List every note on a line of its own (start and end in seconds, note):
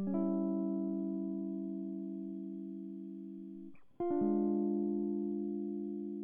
0.00 3.72 G3
0.08 3.74 C#4
0.15 3.73 E4
4.01 6.25 F4
4.11 6.25 D4
4.22 6.25 G#3